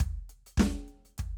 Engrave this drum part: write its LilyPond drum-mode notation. \new DrumStaff \drummode { \time 4/4 \tempo 4 = 100 <bd hh>8 hh16 hh16 <bd sn>8 hh16 hh16 <hh bd>4 r4 | }